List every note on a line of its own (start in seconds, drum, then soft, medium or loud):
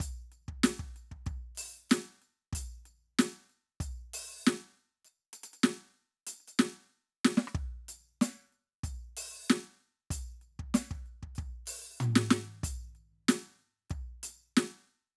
0.01 kick medium
0.01 percussion loud
0.33 percussion soft
0.49 kick medium
0.64 snare loud
0.64 percussion loud
0.80 kick medium
0.97 percussion soft
1.12 kick soft
1.27 kick medium
1.27 percussion soft
1.56 percussion soft
1.58 percussion loud
1.91 snare loud
1.91 percussion medium
1.93 percussion loud
2.23 percussion soft
2.54 kick medium
2.54 percussion loud
2.86 percussion soft
3.20 snare loud
3.20 percussion loud
3.50 percussion soft
3.81 kick medium
3.81 percussion medium
4.14 percussion loud
4.48 snare loud
4.48 percussion medium
5.06 percussion soft
5.34 percussion loud
5.44 percussion loud
5.54 percussion medium
5.64 snare loud
6.28 percussion loud
6.41 percussion soft
6.49 percussion medium
6.60 snare loud
7.26 snare loud
7.38 snare loud
7.48 cross-stick medium
7.56 kick medium
7.89 percussion medium
8.22 snare loud
8.22 percussion loud
8.53 percussion soft
8.84 kick medium
8.84 percussion medium
9.18 percussion loud
9.50 snare loud
9.50 percussion medium
10.11 kick medium
10.11 percussion loud
10.42 percussion soft
10.60 kick medium
10.75 snare loud
10.75 percussion loud
10.92 kick medium
11.07 percussion soft
11.24 kick soft
11.36 kick medium
11.36 percussion soft
11.67 percussion soft
11.67 percussion loud
12.01 floor tom loud
12.01 percussion medium
12.16 snare loud
12.31 snare loud
12.64 kick medium
12.64 percussion loud
12.96 percussion soft
13.29 snare loud
13.29 percussion loud
13.59 percussion soft
13.91 kick medium
13.91 percussion soft
14.24 percussion loud
14.58 snare loud
14.58 percussion medium